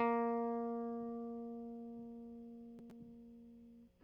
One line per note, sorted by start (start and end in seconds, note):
0.00 3.90 A#3